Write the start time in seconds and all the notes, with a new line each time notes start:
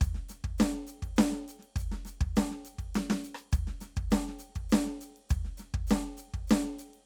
0.01 kick, hi-hat pedal, ride
0.14 snare
0.29 snare, hi-hat pedal, ride
0.44 kick, ride
0.58 snare, hi-hat pedal, ride
0.87 hi-hat pedal, ride
1.02 kick, ride
1.16 snare, hi-hat pedal, ride
1.32 snare
1.48 hi-hat pedal, ride
1.59 snare, ride
1.76 kick, hi-hat pedal, ride
1.92 snare
2.05 snare, hi-hat pedal, ride
2.21 kick, ride
2.36 snare, hi-hat pedal, ride
2.51 snare
2.65 hi-hat pedal, ride
2.79 kick, ride
2.94 snare, hi-hat pedal, ride
3.10 snare
3.24 hi-hat pedal, ride
3.35 cross-stick
3.39 ride
3.52 kick, hi-hat pedal, ride
3.67 snare
3.81 snare, hi-hat pedal, ride
3.97 kick, ride
4.11 snare, hi-hat pedal, ride
4.28 snare
4.39 hi-hat pedal, ride
4.56 kick, ride
4.69 snare, hi-hat pedal, ride
4.86 snare
5.01 hi-hat pedal, ride
5.16 ride
5.29 kick, hi-hat pedal, ride
5.45 snare
5.57 snare, hi-hat pedal, ride
5.74 kick, ride
5.87 snare, hi-hat pedal, ride
6.17 hi-hat pedal, ride
6.34 kick, ride
6.47 snare, hi-hat pedal, ride
6.79 hi-hat pedal, ride
6.94 ride